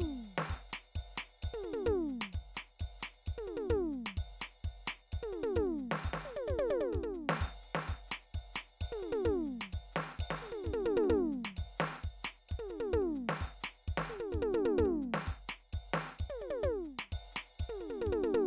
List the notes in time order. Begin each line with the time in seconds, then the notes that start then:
0.01 kick, ride
0.23 hi-hat pedal
0.38 snare
0.50 kick, ride bell
0.69 snare, hi-hat pedal
0.95 kick, ride
1.15 snare, hi-hat pedal
1.43 kick, ride
1.53 mid tom
1.62 hi-hat pedal
1.73 mid tom
1.86 kick, mid tom
1.98 mid tom
2.09 hi-hat pedal
2.22 snare
2.33 kick, ride bell
2.41 kick
2.54 snare, hi-hat pedal
2.80 kick, ride bell
3.00 snare, hi-hat pedal
3.26 kick, ride
3.38 mid tom
3.45 hi-hat pedal, mid tom
3.57 mid tom
3.70 kick, mid tom
3.76 kick
3.92 hi-hat pedal
4.06 snare
4.17 kick, ride bell
4.39 snare, hi-hat pedal
4.60 hi-hat pedal
4.64 kick, ride bell
4.86 snare, hi-hat pedal
5.12 kick, ride
5.22 mid tom
5.32 hi-hat pedal, mid tom
5.43 mid tom
5.56 kick, mid tom
5.66 mid tom
5.78 hi-hat pedal
5.92 snare
6.04 kick, ride
6.14 snare
6.23 hi-hat pedal, high tom
6.36 high tom
6.47 kick, high tom
6.59 high tom
6.68 hi-hat pedal, high tom
6.80 high tom
6.92 kick, mid tom
7.03 mid tom
7.14 hi-hat pedal
7.29 snare
7.41 kick, ride bell
7.50 kick
7.62 hi-hat pedal
7.75 snare
7.88 kick, ride bell
8.07 hi-hat pedal
8.12 snare
8.34 kick, ride bell
8.53 snare, hi-hat pedal
8.81 kick, ride
8.92 mid tom
8.99 hi-hat pedal, mid tom
9.12 mid tom
9.25 kick, mid tom
9.46 hi-hat pedal
9.61 snare
9.73 kick, ride bell
9.92 hi-hat pedal
9.96 snare
10.19 kick, ride
10.31 snare
10.38 hi-hat pedal
10.42 mid tom
10.52 mid tom
10.64 kick, mid tom
10.73 mid tom
10.85 hi-hat pedal, mid tom
10.97 mid tom
11.03 mid tom
11.09 kick, mid tom
11.18 mid tom
11.32 hi-hat pedal
11.45 snare
11.57 kick, ride bell
11.64 kick
11.77 snare, hi-hat pedal
12.04 kick, ride bell
12.23 snare, hi-hat pedal
12.49 kick, ride
12.59 mid tom
12.69 hi-hat pedal, mid tom
12.80 mid tom
12.93 kick, mid tom
13.01 mid tom
13.15 hi-hat pedal
13.29 snare
13.41 kick, ride bell
13.60 snare, hi-hat pedal
13.81 hi-hat pedal
13.88 kick, ride bell
13.98 snare
14.06 hi-hat pedal, mid tom
14.20 mid tom
14.32 kick, mid tom
14.40 kick
14.53 hi-hat pedal, mid tom
14.65 mid tom
14.78 kick, mid tom
14.85 kick, mid tom
15.02 hi-hat pedal
15.14 snare
15.26 kick, ride bell
15.48 snare, hi-hat pedal
15.73 kick, ride bell
15.93 snare, hi-hat pedal
16.19 kick, ride
16.26 kick, high tom
16.39 hi-hat pedal, high tom
16.50 high tom
16.63 kick, high tom
16.85 hi-hat pedal
16.99 snare
17.12 kick, ride bell
17.32 hi-hat pedal
17.36 snare
17.60 kick, ride
17.69 mid tom
17.79 hi-hat pedal, mid tom
17.90 mid tom
18.01 mid tom
18.07 kick
18.12 kick, mid tom
18.23 hi-hat pedal, mid tom
18.34 mid tom